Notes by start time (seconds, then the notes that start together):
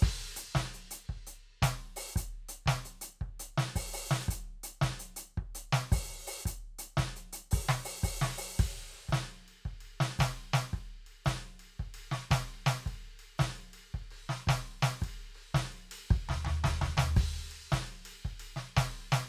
0.01 kick, hi-hat pedal, crash
0.37 closed hi-hat
0.56 kick, snare
0.75 closed hi-hat
0.91 closed hi-hat
1.10 kick
1.27 closed hi-hat
1.63 open hi-hat, kick, snare
1.97 open hi-hat
2.13 kick, hi-hat pedal
2.18 closed hi-hat
2.49 closed hi-hat
2.67 kick, snare
2.86 closed hi-hat
3.02 closed hi-hat
3.22 kick
3.40 closed hi-hat
3.58 snare
3.76 open hi-hat, kick
3.94 open hi-hat
4.11 snare
4.25 hi-hat pedal
4.29 closed hi-hat, kick
4.64 closed hi-hat
4.82 kick, snare
5.00 closed hi-hat
5.17 closed hi-hat
5.38 kick
5.55 closed hi-hat
5.73 snare
5.92 open hi-hat, kick
6.28 open hi-hat
6.43 closed hi-hat, kick, hi-hat pedal
6.79 closed hi-hat
6.98 kick, snare
7.17 closed hi-hat
7.33 closed hi-hat
7.52 open hi-hat, kick
7.69 snare
7.85 open hi-hat
8.04 open hi-hat, kick
8.22 snare
8.38 open hi-hat
8.60 kick, crash
8.93 crash
9.09 kick, snare, hi-hat pedal
9.30 crash
9.49 crash
9.66 kick
9.81 crash
10.01 snare
10.19 kick, snare, hi-hat pedal, crash
10.54 snare, crash
10.74 kick, crash
11.07 crash
11.25 kick, snare, hi-hat pedal
11.43 crash
11.60 crash
11.80 kick
11.95 crash
12.12 snare
12.31 kick, snare, hi-hat pedal, crash
12.67 snare, crash
12.87 kick, crash
13.20 crash
13.39 kick, snare, hi-hat pedal
13.56 crash
13.74 crash
13.95 kick
14.11 crash
14.30 snare
14.48 kick, snare, crash
14.83 snare, crash
15.00 kick, hi-hat pedal
15.04 crash
15.35 crash
15.55 kick, snare
15.73 crash
15.92 crash
16.11 kick
16.29 snare, floor tom
16.45 snare, floor tom
16.64 kick, snare, floor tom, hi-hat pedal
16.82 snare, floor tom
16.98 snare, floor tom
17.16 kick, hi-hat pedal, crash
17.52 crash
17.72 kick, snare, hi-hat pedal
17.87 crash
18.06 crash
18.25 kick
18.40 crash
18.57 snare
18.77 kick, snare, crash
19.13 snare, crash